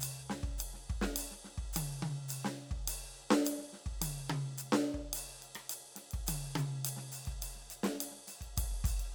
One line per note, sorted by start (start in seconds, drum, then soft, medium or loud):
0.01 hi-hat pedal loud
0.01 ride loud
0.30 snare medium
0.44 kick soft
0.59 hi-hat pedal medium
0.59 ride loud
0.74 snare soft
0.90 kick soft
1.02 snare medium
1.17 hi-hat pedal medium
1.17 ride loud
1.32 snare soft
1.45 snare soft
1.58 kick soft
1.74 hi-hat pedal medium
1.74 high tom medium
1.74 ride loud
2.03 high tom medium
2.29 hi-hat pedal medium
2.29 ride medium
2.45 snare medium
2.71 kick soft
2.88 hi-hat pedal loud
2.88 ride loud
3.31 snare loud
3.45 hi-hat pedal medium
3.45 ride loud
3.59 snare soft
3.73 snare soft
3.86 kick soft
4.02 hi-hat pedal medium
4.02 high tom medium
4.02 ride loud
4.30 high tom loud
4.58 hi-hat pedal medium
4.58 ride medium
4.73 snare medium
4.95 kick soft
5.14 hi-hat pedal medium
5.14 ride loud
5.43 ride soft
5.55 cross-stick medium
5.55 ride medium
5.70 hi-hat pedal loud
5.70 ride loud
5.96 snare soft
5.96 ride medium
6.12 kick soft
6.12 ride medium
6.27 hi-hat pedal medium
6.27 high tom medium
6.27 ride loud
6.56 hi-hat pedal medium
6.56 high tom loud
6.85 hi-hat pedal loud
6.85 ride loud
6.97 snare soft
7.12 hi-hat pedal medium
7.12 ride soft
7.26 kick soft
7.26 ride soft
7.42 hi-hat pedal medium
7.42 ride medium
7.56 snare soft
7.71 hi-hat pedal medium
7.71 ride medium
7.84 snare loud
7.84 ride medium
8.01 hi-hat pedal medium
8.01 ride loud
8.12 snare soft
8.28 snare soft
8.28 hi-hat pedal medium
8.28 ride soft
8.41 kick soft
8.41 ride soft
8.57 kick medium
8.57 hi-hat pedal soft
8.57 ride loud
8.70 snare soft
8.85 kick medium
8.85 hi-hat pedal medium
8.85 ride medium
9.00 ride medium